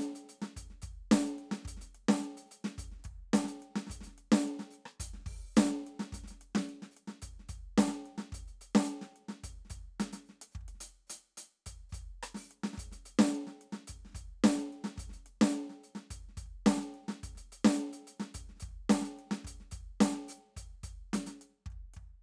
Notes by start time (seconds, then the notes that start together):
0.01 closed hi-hat
0.12 closed hi-hat, snare
0.29 closed hi-hat
0.42 snare
0.56 closed hi-hat, kick
0.70 snare
0.82 closed hi-hat, kick
0.91 kick
1.11 closed hi-hat, snare
1.21 snare
1.25 closed hi-hat
1.38 closed hi-hat
1.51 snare
1.62 kick, snare
1.68 closed hi-hat, kick
1.77 snare
1.81 closed hi-hat, snare
1.95 closed hi-hat
2.08 snare
2.19 snare
2.23 closed hi-hat
2.34 open hi-hat, snare
2.38 snare
2.42 snare
2.46 hi-hat pedal
2.51 closed hi-hat
2.64 snare
2.78 closed hi-hat, kick
2.84 kick
2.91 snare
2.96 snare
2.99 snare
3.04 kick, closed hi-hat
3.33 closed hi-hat, snare
3.44 closed hi-hat, snare
3.59 closed hi-hat, hi-hat pedal
3.76 snare
3.87 kick, snare
3.91 closed hi-hat
4.01 closed hi-hat, snare
4.07 snare
4.18 closed hi-hat
4.32 snare
4.47 closed hi-hat
4.59 snare
4.70 closed hi-hat, hi-hat pedal
4.85 cross-stick
5.00 closed hi-hat, kick
5.06 kick
5.13 snare
5.20 snare
5.24 open hi-hat, kick, snare
5.32 kick
5.36 kick
5.54 closed hi-hat, snare, hi-hat pedal
5.65 snare
5.87 closed hi-hat
5.99 snare
6.12 closed hi-hat, kick, snare
6.24 closed hi-hat, snare
6.31 snare
6.41 closed hi-hat
6.55 snare
6.69 closed hi-hat
6.82 snare
6.91 hi-hat pedal
6.97 closed hi-hat
7.07 snare
7.22 closed hi-hat, kick
7.39 snare
7.48 closed hi-hat, kick, snare
7.55 kick
7.58 kick
7.78 closed hi-hat, snare
7.88 snare
7.93 open hi-hat
8.06 closed hi-hat
8.18 snare
8.32 closed hi-hat, kick
8.38 kick
8.48 closed hi-hat
8.61 closed hi-hat
8.75 snare
8.84 hi-hat pedal
8.89 closed hi-hat
9.01 snare
9.16 closed hi-hat
9.28 snare
9.43 closed hi-hat, kick
9.65 snare
9.69 closed hi-hat, kick, snare
9.78 kick
10.00 closed hi-hat, snare
10.13 closed hi-hat, snare
10.26 snare, hi-hat pedal
10.41 closed hi-hat
10.52 kick, hi-hat pedal
10.61 kick
10.68 closed hi-hat
10.74 snare
10.80 closed hi-hat
11.07 closed hi-hat, hi-hat pedal
11.37 closed hi-hat
11.66 closed hi-hat, kick
11.89 kick, hi-hat pedal
11.94 closed hi-hat
11.99 kick
12.01 kick
12.23 closed hi-hat, cross-stick
12.34 open hi-hat, snare
12.47 closed hi-hat, hi-hat pedal
12.63 snare
12.73 snare
12.77 closed hi-hat, kick
12.92 closed hi-hat, snare
13.05 closed hi-hat
13.19 snare
13.27 snare
13.34 closed hi-hat
13.47 snare
13.61 closed hi-hat
13.72 snare
13.79 snare
13.87 closed hi-hat, kick
14.05 snare
14.09 snare
14.12 closed hi-hat, kick, snare
14.44 closed hi-hat, snare
14.55 closed hi-hat, snare
14.72 closed hi-hat
14.84 snare
14.96 closed hi-hat, kick, snare
15.03 kick
15.09 closed hi-hat, snare
15.15 snare
15.26 closed hi-hat
15.41 snare
15.47 snare, hi-hat pedal
15.55 closed hi-hat
15.69 snare
15.83 closed hi-hat
15.95 snare
16.10 closed hi-hat, kick
16.29 snare
16.35 closed hi-hat, kick, snare
16.43 kick
16.46 kick
16.66 closed hi-hat, snare
16.77 snare
16.81 closed hi-hat
16.94 closed hi-hat
17.08 snare
17.22 closed hi-hat, kick, snare
17.35 closed hi-hat, snare
17.40 snare
17.52 closed hi-hat
17.65 snare
17.74 snare, hi-hat pedal
17.79 closed hi-hat
17.93 closed hi-hat, snare
18.07 closed hi-hat
18.20 snare
18.34 closed hi-hat, kick
18.40 kick
18.49 snare
18.56 closed hi-hat, snare
18.62 kick
18.68 kick
18.71 kick
18.89 closed hi-hat, snare
19.01 closed hi-hat, snare
19.19 closed hi-hat
19.31 snare
19.44 closed hi-hat, kick
19.60 snare
19.71 closed hi-hat, kick
19.80 kick
20.00 closed hi-hat, snare
20.12 snare
20.28 open hi-hat, hi-hat pedal
20.56 closed hi-hat, kick
20.83 closed hi-hat, kick
20.89 kick
20.92 kick
21.13 closed hi-hat, snare
21.26 closed hi-hat, snare
21.41 closed hi-hat
21.66 kick
21.70 kick, closed hi-hat
21.94 kick, closed hi-hat